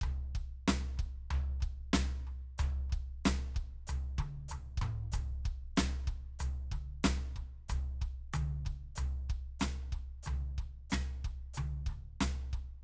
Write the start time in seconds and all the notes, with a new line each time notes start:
0.01 kick, floor tom
0.35 kick, floor tom
0.68 snare, floor tom
0.98 kick, floor tom
1.31 floor tom
1.60 kick, floor tom
1.93 snare, floor tom
2.27 floor tom
2.58 kick, floor tom, hi-hat pedal
2.90 kick, floor tom
3.25 snare, floor tom, hi-hat pedal
3.54 kick, floor tom
3.87 floor tom, hi-hat pedal
4.18 kick, floor tom, high tom
4.48 floor tom, hi-hat pedal
4.53 mid tom
4.77 kick
4.81 floor tom, mid tom
5.12 kick, floor tom, hi-hat pedal
5.45 kick, floor tom
5.76 snare, floor tom, hi-hat pedal
6.07 kick, floor tom
6.39 floor tom, hi-hat pedal
6.71 kick, floor tom, high tom
7.03 snare, floor tom, hi-hat pedal
7.36 kick, floor tom
7.68 kick, floor tom, hi-hat pedal
8.01 kick, floor tom
8.33 floor tom, hi-hat pedal, high tom
8.65 kick, floor tom
8.95 floor tom, hi-hat pedal
9.29 kick, floor tom
9.59 snare, floor tom, hi-hat pedal
9.92 kick, floor tom
10.23 hi-hat pedal, high tom
10.27 floor tom
10.58 kick, floor tom
10.90 snare, floor tom, hi-hat pedal
11.24 kick, floor tom
11.53 floor tom, hi-hat pedal
11.58 high tom
11.86 kick, mid tom
11.91 floor tom
12.20 snare, floor tom, hi-hat pedal
12.53 kick, floor tom